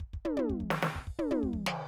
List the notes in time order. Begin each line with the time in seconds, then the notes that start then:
0.04 kick
0.13 kick
0.24 floor tom, high tom
0.36 floor tom, high tom
0.49 kick
0.60 kick
0.70 snare, ride
0.82 snare, ride
0.95 kick
1.07 kick
1.18 floor tom, high tom
1.30 floor tom, high tom
1.43 kick
1.53 kick
1.66 snare, crash